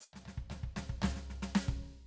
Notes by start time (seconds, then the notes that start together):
0.00 hi-hat pedal
0.13 snare, floor tom
0.25 snare, floor tom
0.37 kick
0.50 snare, floor tom
0.63 kick
0.76 snare, floor tom
0.89 kick
1.02 snare, floor tom
1.16 snare
1.30 snare
1.42 snare
1.55 snare
1.68 kick